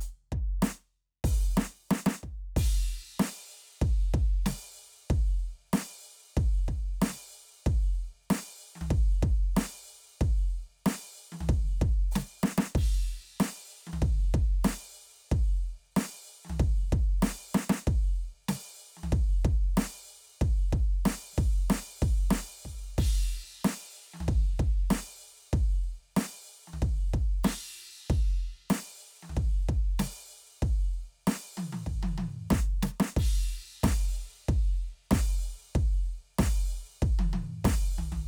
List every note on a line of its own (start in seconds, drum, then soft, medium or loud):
0.01 closed hi-hat medium
0.32 kick medium
0.63 closed hi-hat loud
0.63 snare loud
1.24 open hi-hat loud
1.24 kick loud
1.57 snare loud
1.88 snare loud
1.88 hi-hat pedal soft
2.07 snare loud
2.24 kick medium
2.57 open hi-hat loud
2.57 kick loud
2.57 crash loud
3.20 open hi-hat loud
3.20 snare loud
3.82 kick loud
4.14 kick loud
4.46 open hi-hat loud
4.46 snare loud
5.10 kick loud
5.74 open hi-hat loud
5.74 snare loud
6.37 kick loud
6.68 kick medium
7.02 open hi-hat loud
7.02 snare loud
7.10 snare soft
7.67 kick loud
8.31 open hi-hat loud
8.31 snare loud
8.76 high tom medium
8.82 floor tom loud
8.91 kick loud
9.23 kick loud
9.57 open hi-hat loud
9.57 snare loud
10.21 kick loud
10.86 open hi-hat loud
10.86 snare loud
11.32 high tom loud
11.41 floor tom loud
11.49 kick loud
11.82 kick loud
12.12 open hi-hat loud
12.16 snare loud
12.43 snare loud
12.58 snare loud
12.75 kick loud
12.75 crash loud
13.40 open hi-hat loud
13.40 snare loud
13.87 high tom loud
13.93 floor tom loud
14.02 kick loud
14.34 kick loud
14.64 open hi-hat loud
14.64 snare loud
15.32 kick loud
15.97 open hi-hat loud
15.97 snare loud
16.45 high tom medium
16.50 floor tom loud
16.60 kick loud
16.93 kick loud
17.23 open hi-hat loud
17.23 snare loud
17.55 snare loud
17.70 snare loud
17.88 kick loud
18.49 open hi-hat loud
18.49 snare loud
18.97 high tom medium
19.04 floor tom loud
19.13 kick loud
19.45 kick loud
19.78 open hi-hat loud
19.78 snare loud
20.42 kick loud
20.73 kick loud
21.06 open hi-hat loud
21.06 snare loud
21.33 snare soft
21.38 kick loud
21.70 open hi-hat loud
21.70 snare loud
22.02 kick loud
22.31 open hi-hat loud
22.31 snare loud
22.65 kick soft
22.99 kick loud
22.99 crash loud
23.65 open hi-hat loud
23.65 snare loud
24.14 high tom medium
24.21 floor tom loud
24.28 kick loud
24.60 kick loud
24.91 open hi-hat loud
24.91 snare loud
25.53 kick loud
26.17 open hi-hat loud
26.17 snare loud
26.68 high tom medium
26.74 floor tom loud
26.82 kick loud
27.14 kick loud
27.44 snare loud
27.44 crash loud
28.10 kick loud
28.70 open hi-hat loud
28.70 snare loud
29.23 high tom medium
29.30 floor tom loud
29.37 kick loud
29.69 kick loud
30.00 open hi-hat loud
30.00 snare loud
30.63 kick loud
30.74 snare soft
31.28 open hi-hat loud
31.28 snare loud
31.58 high tom loud
31.73 high tom loud
31.87 kick medium
32.03 high tom loud
32.18 high tom loud
32.51 kick loud
32.51 snare loud
32.83 snare loud
33.00 snare loud
33.17 kick loud
33.17 crash loud
33.84 open hi-hat loud
33.84 kick loud
33.84 snare loud
34.49 kick loud
35.11 open hi-hat loud
35.11 kick loud
35.11 snare loud
35.76 kick loud
36.06 snare soft
36.39 open hi-hat loud
36.39 kick loud
36.39 snare loud
37.03 kick loud
37.19 high tom loud
37.34 high tom loud
37.65 open hi-hat loud
37.65 kick loud
37.65 snare loud
37.99 floor tom loud
38.12 floor tom loud